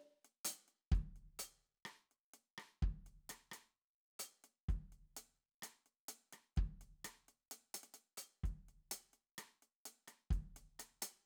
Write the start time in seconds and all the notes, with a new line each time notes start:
0.01 closed hi-hat
0.25 closed hi-hat
0.45 closed hi-hat
0.68 closed hi-hat
0.92 kick, closed hi-hat
1.16 closed hi-hat
1.39 closed hi-hat
1.66 closed hi-hat
1.85 cross-stick, closed hi-hat
2.11 closed hi-hat
2.34 closed hi-hat
2.58 cross-stick, closed hi-hat
2.82 kick
3.06 closed hi-hat
3.29 cross-stick, closed hi-hat
3.52 cross-stick, closed hi-hat
4.19 closed hi-hat
4.44 closed hi-hat
4.69 kick, closed hi-hat
4.92 closed hi-hat
5.17 closed hi-hat
5.62 cross-stick, closed hi-hat
5.86 closed hi-hat
6.08 closed hi-hat
6.33 cross-stick, closed hi-hat
6.56 kick, closed hi-hat
6.81 closed hi-hat
7.04 cross-stick, closed hi-hat
7.28 closed hi-hat
7.51 closed hi-hat
7.74 closed hi-hat
7.83 closed hi-hat
7.94 closed hi-hat
8.17 closed hi-hat
8.44 kick, closed hi-hat
8.69 closed hi-hat
8.91 closed hi-hat
9.13 closed hi-hat
9.38 cross-stick, closed hi-hat
9.62 closed hi-hat
9.86 closed hi-hat
10.08 cross-stick, closed hi-hat
10.30 kick, closed hi-hat
10.56 closed hi-hat
10.79 cross-stick, closed hi-hat
11.02 cross-stick, closed hi-hat